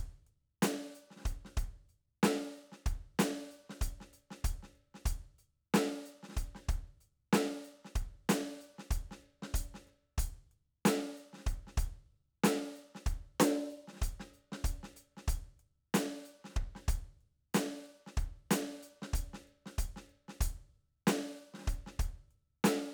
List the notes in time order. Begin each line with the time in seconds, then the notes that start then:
0.27 closed hi-hat
0.63 closed hi-hat, snare
0.95 closed hi-hat
1.11 snare
1.17 snare
1.20 snare
1.22 snare
1.26 closed hi-hat, kick
1.45 snare
1.58 closed hi-hat, kick
1.89 closed hi-hat
2.24 closed hi-hat, snare
2.56 closed hi-hat
2.72 snare
2.87 closed hi-hat, kick
3.20 closed hi-hat, snare
3.52 closed hi-hat
3.70 snare
3.82 closed hi-hat, kick
4.01 snare
4.14 closed hi-hat
4.31 snare
4.45 closed hi-hat, kick
4.63 snare
4.76 closed hi-hat
4.95 snare
5.06 closed hi-hat, kick
5.39 closed hi-hat
5.74 closed hi-hat, snare
6.06 closed hi-hat
6.23 snare
6.29 snare
6.32 snare
6.37 closed hi-hat, kick
6.55 snare
6.69 closed hi-hat, kick
7.01 closed hi-hat
7.33 closed hi-hat, snare
7.65 closed hi-hat
7.85 snare
7.96 closed hi-hat, kick
8.30 closed hi-hat, snare
8.61 closed hi-hat
8.79 snare
8.91 closed hi-hat, kick
9.12 snare
9.23 closed hi-hat
9.43 snare
9.55 closed hi-hat, kick
9.75 snare
9.87 snare, closed hi-hat
10.18 closed hi-hat, kick
10.52 closed hi-hat
10.86 closed hi-hat, snare
11.17 closed hi-hat
11.34 snare
11.37 snare
11.39 snare
11.47 closed hi-hat, kick
11.68 snare
11.78 closed hi-hat, kick
12.44 closed hi-hat, snare
12.76 closed hi-hat
12.95 snare
13.07 closed hi-hat, kick
13.40 closed hi-hat, snare
13.71 closed hi-hat
13.88 snare
13.93 snare
13.96 snare
14.02 closed hi-hat, kick
14.20 snare
14.34 closed hi-hat
14.53 snare
14.65 closed hi-hat, kick
14.84 snare
14.97 closed hi-hat
15.17 snare
15.28 closed hi-hat, kick
15.60 closed hi-hat
15.95 closed hi-hat, snare
16.26 closed hi-hat
16.45 snare
16.49 snare
16.53 kick, snare
16.57 closed hi-hat
16.76 snare
16.89 closed hi-hat, kick
17.21 closed hi-hat
17.55 closed hi-hat, snare
17.86 closed hi-hat
18.07 snare
18.18 closed hi-hat, kick
18.24 ride
18.51 closed hi-hat, snare
18.83 closed hi-hat
19.03 snare
19.14 closed hi-hat, kick
19.34 snare
19.48 closed hi-hat
19.66 snare
19.79 closed hi-hat, kick
19.97 snare
20.10 closed hi-hat
20.29 snare
20.41 closed hi-hat, kick
21.08 closed hi-hat, snare
21.38 snare, closed hi-hat
21.54 snare
21.59 snare
21.62 snare
21.64 kick, snare
21.69 closed hi-hat
21.87 snare
22.00 closed hi-hat, kick
22.31 closed hi-hat
22.65 closed hi-hat, snare